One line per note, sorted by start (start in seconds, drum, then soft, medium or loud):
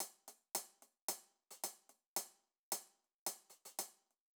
0.01 closed hi-hat loud
0.28 closed hi-hat medium
0.55 closed hi-hat loud
0.82 closed hi-hat soft
1.08 closed hi-hat loud
1.51 closed hi-hat medium
1.64 closed hi-hat loud
1.89 closed hi-hat soft
2.16 closed hi-hat loud
2.72 closed hi-hat loud
3.04 closed hi-hat soft
3.26 closed hi-hat loud
3.50 closed hi-hat soft
3.65 closed hi-hat medium
3.79 closed hi-hat loud
4.11 closed hi-hat soft